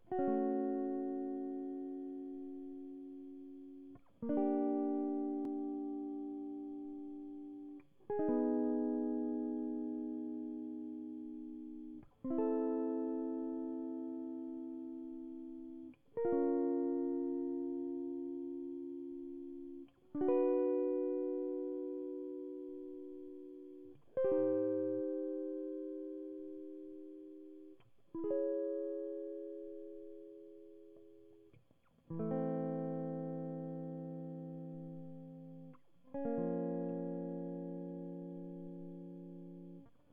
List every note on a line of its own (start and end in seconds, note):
0.12 3.97 F#4
0.19 3.99 C#4
0.28 2.63 A3
4.23 7.04 A#3
4.30 7.81 D4
4.37 7.81 G4
8.10 11.98 G#4
8.19 12.02 D#4
8.29 12.07 B3
12.25 15.97 C4
12.31 15.92 E4
12.39 15.56 A4
16.17 18.84 A#4
16.25 19.86 F4
16.33 19.89 C#4
20.15 23.93 D4
20.21 23.95 F#4
20.29 23.93 B4
24.17 27.37 C5
24.25 27.77 G4
24.32 27.77 D#4
28.15 31.52 E4
28.24 30.52 G#4
28.31 30.62 C#5
32.11 35.76 E3
32.20 34.48 A3
32.32 35.76 C4
36.15 39.86 C#4
36.26 39.00 A#3
36.39 39.82 F3